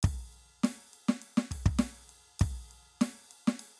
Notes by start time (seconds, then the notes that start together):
0.03 kick, ride
0.33 ride
0.64 snare, ride
0.93 ride
1.09 snare
1.22 ride
1.37 snare
1.51 kick, ride
1.66 kick
1.79 snare, ride
2.09 ride
2.40 kick, ride
2.71 ride
3.01 snare, ride
3.31 ride
3.48 snare
3.60 ride